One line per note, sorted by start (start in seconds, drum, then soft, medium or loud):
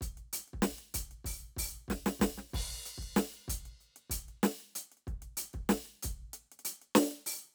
0.01 closed hi-hat medium
0.01 kick medium
0.17 closed hi-hat soft
0.33 closed hi-hat loud
0.48 closed hi-hat soft
0.53 kick soft
0.62 snare loud
0.78 closed hi-hat soft
0.94 closed hi-hat loud
0.94 kick medium
1.11 closed hi-hat soft
1.25 open hi-hat loud
1.25 kick medium
1.46 open hi-hat soft
1.57 open hi-hat loud
1.57 kick medium
1.88 kick soft
1.88 snare medium
1.88 hi-hat pedal soft
2.06 snare loud
2.20 kick soft
2.20 snare loud
2.38 snare soft
2.49 hi-hat pedal soft
2.54 kick medium
2.54 crash medium
2.70 closed hi-hat soft
2.86 closed hi-hat medium
2.98 kick soft
3.03 closed hi-hat soft
3.16 snare loud
3.34 closed hi-hat soft
3.48 closed hi-hat loud
3.48 kick medium
3.66 closed hi-hat soft
3.80 closed hi-hat soft
3.96 closed hi-hat soft
4.10 closed hi-hat loud
4.10 kick medium
4.28 closed hi-hat soft
4.43 snare loud
4.60 closed hi-hat soft
4.75 closed hi-hat loud
4.92 closed hi-hat soft
4.97 closed hi-hat soft
5.07 kick medium
5.07 closed hi-hat soft
5.22 closed hi-hat soft
5.37 closed hi-hat loud
5.53 kick medium
5.53 closed hi-hat soft
5.69 snare loud
5.86 closed hi-hat soft
6.03 closed hi-hat loud
6.03 kick medium
6.33 closed hi-hat medium
6.52 closed hi-hat soft
6.59 closed hi-hat soft
6.65 closed hi-hat loud
6.82 closed hi-hat soft
6.95 snare loud
7.11 closed hi-hat soft
7.26 open hi-hat loud
7.42 open hi-hat soft